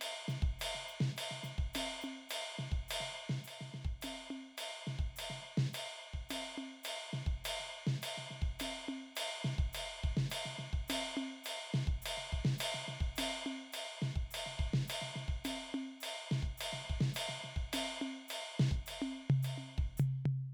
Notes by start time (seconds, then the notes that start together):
0.01 hi-hat pedal, ride
0.28 snare, hi-hat pedal
0.42 kick
0.59 hi-hat pedal, ride
0.75 snare
0.88 hi-hat pedal
1.00 snare
1.16 hi-hat pedal, ride
1.31 snare
1.43 snare, hi-hat pedal
1.58 kick
1.73 hi-hat pedal, high tom, ride
2.01 hi-hat pedal, high tom
2.29 hi-hat pedal, ride
2.59 snare
2.72 kick
2.88 hi-hat pedal, ride
3.00 snare
3.29 snare
3.44 hi-hat pedal, ride
3.61 snare
3.74 snare
3.85 kick
4.01 hi-hat pedal, high tom, ride
4.30 high tom
4.57 hi-hat pedal, ride
4.87 snare
4.99 kick
5.16 hi-hat pedal, ride
5.30 snare
5.57 snare
5.73 hi-hat pedal, ride
6.13 kick
6.29 hi-hat pedal, high tom, ride
6.58 high tom
6.83 hi-hat pedal, ride
7.13 snare
7.26 kick
7.44 hi-hat pedal, ride
7.60 snare
7.87 snare
8.02 hi-hat pedal, ride
8.17 snare
8.31 snare
8.42 kick
8.59 hi-hat pedal, high tom, ride
8.88 high tom
9.15 hi-hat pedal, ride
9.44 snare
9.58 kick
9.73 hi-hat pedal, ride
10.03 kick
10.17 snare
10.30 hi-hat pedal, ride
10.45 snare
10.58 snare
10.73 kick
10.88 hi-hat pedal, high tom, ride
11.17 high tom
11.44 hi-hat pedal, ride
11.74 snare
11.87 kick
12.02 hi-hat pedal, ride
12.17 snare
12.32 kick
12.45 snare
12.58 hi-hat pedal, ride
12.74 snare
12.88 snare
13.00 kick
13.15 hi-hat pedal, high tom, ride
13.46 high tom
13.72 hi-hat pedal, ride
14.02 snare
14.16 kick
14.31 hi-hat pedal, ride
14.46 snare
14.59 kick
14.73 snare
14.87 hi-hat pedal, ride
15.02 snare
15.16 snare
15.28 kick
15.44 hi-hat pedal, high tom, ride bell
15.74 high tom
16.00 hi-hat pedal, ride
16.31 snare
16.42 kick
16.57 hi-hat pedal, ride
16.73 snare
16.89 kick
17.01 snare
17.14 hi-hat pedal, ride
17.29 snare
17.44 snare
17.56 kick
17.72 hi-hat pedal, high tom, ride
18.01 high tom
18.28 hi-hat pedal, ride
18.60 snare
18.71 kick
18.86 hi-hat pedal, ride
19.02 high tom
19.30 floor tom
19.42 hi-hat pedal, ride
19.58 high tom
19.78 kick
19.97 floor tom, hi-hat pedal
20.25 floor tom